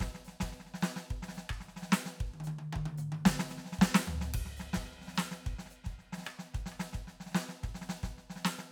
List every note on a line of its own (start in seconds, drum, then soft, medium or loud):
0.01 kick soft
0.01 snare medium
0.07 kick soft
0.15 snare soft
0.25 snare soft
0.25 hi-hat pedal soft
0.41 kick soft
0.41 snare medium
0.52 snare soft
0.60 snare soft
0.67 snare soft
0.75 snare soft
0.82 snare medium
0.82 hi-hat pedal soft
0.97 snare medium
1.11 kick soft
1.11 snare soft
1.17 kick soft
1.23 snare soft
1.29 snare soft
1.35 snare soft
1.35 hi-hat pedal soft
1.50 kick soft
1.50 cross-stick medium
1.61 snare soft
1.69 snare soft
1.76 snare soft
1.83 snare soft
1.90 snare soft
1.93 snare loud
1.93 hi-hat pedal soft
2.06 snare medium
2.21 kick soft
2.27 kick soft
2.34 high tom medium
2.41 hi-hat pedal medium
2.41 high tom medium
2.48 high tom medium
2.59 high tom medium
2.73 kick soft
2.73 high tom loud
2.82 kick soft
2.86 high tom loud
2.98 hi-hat pedal medium
2.98 mid tom soft
3.13 high tom medium
3.26 kick soft
3.26 snare loud
3.40 snare medium
3.50 snare soft
3.50 hi-hat pedal medium
3.58 snare soft
3.65 snare soft
3.66 snare soft
3.73 snare soft
3.79 kick soft
3.79 snare loud
3.95 snare loud
4.00 snare medium
4.05 floor tom loud
4.05 hi-hat pedal medium
4.22 snare medium
4.35 kick medium
4.35 ride loud
4.40 kick soft
4.46 kick soft
4.46 snare soft
4.57 snare soft
4.57 hi-hat pedal soft
4.74 kick soft
4.74 snare medium
4.85 snare soft
4.93 snare soft
4.99 snare soft
5.01 snare soft
5.08 snare soft
5.15 snare soft
5.15 hi-hat pedal soft
5.18 snare loud
5.32 snare soft
5.46 kick soft
5.46 snare soft
5.53 kick soft
5.59 snare soft
5.66 snare soft
5.71 hi-hat pedal soft
5.85 kick soft
5.85 snare soft
5.87 snare soft
5.92 kick soft
5.99 snare soft
6.06 snare soft
6.13 snare medium
6.18 snare soft
6.23 snare soft
6.23 hi-hat pedal soft
6.27 cross-stick medium
6.40 snare soft
6.54 kick soft
6.54 snare soft
6.61 kick soft
6.66 snare medium
6.72 cross-stick soft
6.80 snare medium
6.80 hi-hat pedal soft
6.93 kick soft
6.93 snare soft
7.08 snare soft
7.21 snare soft
7.27 snare soft
7.32 snare soft
7.35 snare loud
7.35 hi-hat pedal soft
7.49 snare soft
7.64 kick soft
7.64 snare soft
7.70 kick soft
7.75 snare soft
7.82 snare soft
7.88 snare soft
7.88 hi-hat pedal soft
7.90 snare medium
8.04 kick soft
8.04 snare soft
8.09 kick soft
8.18 snare soft
8.30 snare soft
8.36 snare soft
8.42 snare soft
8.45 snare loud
8.45 hi-hat pedal medium
8.59 snare soft